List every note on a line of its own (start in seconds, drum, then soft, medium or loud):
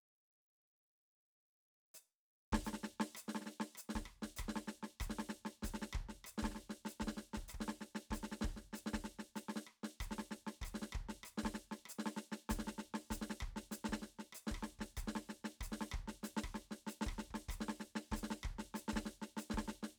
1.94 hi-hat pedal medium
2.52 kick soft
2.52 snare medium
2.59 kick soft
2.65 snare soft
2.65 hi-hat pedal soft
2.73 snare soft
3.00 snare medium
3.15 cross-stick soft
3.15 hi-hat pedal medium
3.28 snare soft
3.35 snare soft
3.41 snare soft
3.46 snare soft
3.60 snare soft
3.75 cross-stick soft
3.75 hi-hat pedal medium
3.89 snare soft
3.95 kick soft
3.95 snare soft
4.05 cross-stick soft
4.22 kick soft
4.22 snare soft
4.36 kick soft
4.36 cross-stick medium
4.36 hi-hat pedal medium
4.48 snare soft
4.56 snare soft
4.67 snare soft
4.83 snare soft
5.00 kick soft
5.00 cross-stick medium
5.00 hi-hat pedal medium
5.10 snare soft
5.18 snare soft
5.29 snare soft
5.45 snare soft
5.62 kick soft
5.62 snare soft
5.62 hi-hat pedal medium
5.74 snare soft
5.82 snare soft
5.93 kick soft
5.93 cross-stick medium
6.01 kick soft
6.09 snare soft
6.24 cross-stick soft
6.24 hi-hat pedal medium
6.38 snare soft
6.42 kick soft
6.42 snare medium
6.51 snare soft
6.55 snare soft
6.69 snare soft
6.85 snare soft
6.85 hi-hat pedal soft
7.00 kick soft
7.00 snare soft
7.07 snare soft
7.17 snare soft
7.33 kick soft
7.33 snare soft
7.48 cross-stick soft
7.48 hi-hat pedal medium
7.54 kick soft
7.60 snare soft
7.68 snare soft
7.81 snare soft
7.95 snare soft
8.10 kick soft
8.10 snare soft
8.10 hi-hat pedal medium
8.23 snare soft
8.32 snare soft
8.41 kick soft
8.41 snare medium
8.50 kick soft
8.56 snare soft
8.73 snare soft
8.73 hi-hat pedal medium
8.86 snare soft
8.93 kick soft
8.93 snare soft
9.04 snare soft
9.19 snare soft
9.36 snare soft
9.36 hi-hat pedal soft
9.48 snare soft
9.56 snare soft
9.67 cross-stick soft
9.83 snare soft
10.00 kick soft
10.00 cross-stick medium
10.00 hi-hat pedal soft
10.11 snare soft
10.18 snare soft
10.31 snare soft
10.47 snare soft
10.61 kick soft
10.61 cross-stick medium
10.61 hi-hat pedal medium
10.74 snare soft
10.82 snare soft
10.92 kick soft
10.92 cross-stick medium
11.09 snare soft
11.23 cross-stick soft
11.23 hi-hat pedal medium
11.38 snare soft
11.43 kick soft
11.43 snare medium
11.54 snare soft
11.71 snare soft
11.85 cross-stick soft
11.85 hi-hat pedal medium
11.99 snare soft
12.06 snare soft
12.16 snare soft
12.32 snare soft
12.49 kick soft
12.49 snare medium
12.49 hi-hat pedal medium
12.59 snare soft
12.67 snare soft
12.78 snare soft
12.94 snare soft
13.10 kick soft
13.10 snare soft
13.10 hi-hat pedal medium
13.21 snare soft
13.30 snare soft
13.40 kick soft
13.40 cross-stick medium
13.56 snare soft
13.71 snare soft
13.71 hi-hat pedal medium
13.84 snare soft
13.89 kick soft
13.89 snare soft
14.02 snare soft
14.19 snare soft
14.33 cross-stick soft
14.33 hi-hat pedal medium
14.47 snare soft
14.51 kick soft
14.51 cross-stick soft
14.62 snare soft
14.79 kick soft
14.79 snare soft
14.97 kick soft
14.97 cross-stick soft
14.97 hi-hat pedal medium
15.07 snare soft
15.15 snare soft
15.29 snare soft
15.44 snare soft
15.61 kick soft
15.61 cross-stick soft
15.61 hi-hat pedal medium
15.72 snare soft
15.81 snare soft
15.92 kick soft
15.92 cross-stick medium
16.08 snare soft
16.23 snare soft
16.23 hi-hat pedal medium
16.37 snare medium
16.43 kick soft
16.43 cross-stick medium
16.54 snare soft
16.71 snare soft
16.87 snare soft
16.87 hi-hat pedal medium
17.01 snare medium
17.06 kick soft
17.06 cross-stick medium
17.18 snare soft
17.30 kick soft
17.30 snare soft
17.48 kick soft
17.48 cross-stick medium
17.48 hi-hat pedal medium
17.60 snare soft
17.68 snare soft
17.80 snare soft
17.95 snare soft
18.11 kick soft
18.11 snare soft
18.16 hi-hat pedal medium
18.23 snare soft
18.30 snare soft
18.43 kick soft
18.43 cross-stick medium
18.58 snare soft
18.74 snare soft
18.74 hi-hat pedal medium
18.88 snare soft
18.93 kick soft
18.93 snare medium
19.05 snare soft
19.22 snare soft
19.37 snare soft
19.37 hi-hat pedal medium
19.50 kick soft
19.50 snare soft
19.57 snare soft
19.68 snare soft
19.83 snare soft